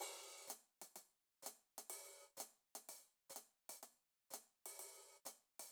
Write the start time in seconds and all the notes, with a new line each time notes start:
0.00 open hi-hat
0.47 closed hi-hat, hi-hat pedal
0.81 open hi-hat
0.96 open hi-hat
1.42 closed hi-hat, hi-hat pedal
1.78 closed hi-hat
1.90 open hi-hat
2.37 closed hi-hat, hi-hat pedal
2.75 open hi-hat
2.89 open hi-hat
3.29 hi-hat pedal
3.36 closed hi-hat
3.69 open hi-hat
3.83 open hi-hat
4.30 closed hi-hat, hi-hat pedal
4.66 open hi-hat
4.79 open hi-hat
5.25 closed hi-hat, hi-hat pedal
5.59 open hi-hat